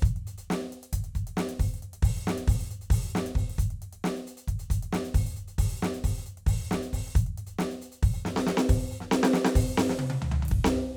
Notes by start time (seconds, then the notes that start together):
0.01 kick, hi-hat pedal
0.05 closed hi-hat
0.17 closed hi-hat
0.27 closed hi-hat
0.38 closed hi-hat
0.51 snare
0.62 closed hi-hat
0.73 closed hi-hat
0.84 closed hi-hat
0.93 kick, closed hi-hat
1.05 closed hi-hat
1.16 closed hi-hat, kick
1.28 closed hi-hat
1.38 snare
1.49 closed hi-hat
1.60 open hi-hat, kick
1.75 hi-hat pedal, open hi-hat
1.83 closed hi-hat
1.94 closed hi-hat
2.03 open hi-hat, kick
2.18 open hi-hat
2.24 snare, hi-hat pedal
2.38 closed hi-hat
2.48 open hi-hat, kick
2.62 open hi-hat
2.67 hi-hat pedal
2.71 closed hi-hat
2.82 closed hi-hat
2.91 open hi-hat, kick
3.04 open hi-hat
3.10 hi-hat pedal
3.16 snare
3.27 closed hi-hat
3.36 open hi-hat, kick
3.50 open hi-hat
3.56 closed hi-hat, kick, hi-hat pedal
3.71 closed hi-hat
3.82 closed hi-hat
3.93 closed hi-hat
4.05 snare
4.16 closed hi-hat
4.28 closed hi-hat
4.48 kick, closed hi-hat
4.60 closed hi-hat
4.71 closed hi-hat, kick
4.83 closed hi-hat
4.93 snare
5.05 closed hi-hat
5.15 open hi-hat, kick
5.27 open hi-hat
5.34 closed hi-hat, hi-hat pedal
5.48 closed hi-hat
5.59 open hi-hat, kick
5.71 open hi-hat
5.79 snare, hi-hat pedal
5.94 closed hi-hat
6.04 open hi-hat, kick
6.18 open hi-hat
6.22 hi-hat pedal
6.26 closed hi-hat
6.38 closed hi-hat
6.47 open hi-hat, kick
6.60 open hi-hat
6.68 snare, hi-hat pedal
6.83 closed hi-hat
6.94 open hi-hat, kick
7.06 open hi-hat
7.13 closed hi-hat, kick, hi-hat pedal
7.27 closed hi-hat
7.38 closed hi-hat
7.47 closed hi-hat
7.59 snare
7.71 closed hi-hat
7.82 closed hi-hat
8.03 open hi-hat, kick
8.20 hi-hat pedal
8.26 snare
8.37 snare
8.47 snare
8.58 snare
8.70 open hi-hat, kick
8.80 open hi-hat
8.91 open hi-hat
8.96 hi-hat pedal
9.01 snare
9.12 snare
9.24 snare
9.34 snare
9.45 snare
9.56 open hi-hat, kick
9.78 snare
9.90 snare
9.97 kick, high tom
10.10 high tom
10.22 floor tom
10.32 floor tom
10.43 floor tom, ride
10.49 kick, ride
10.65 snare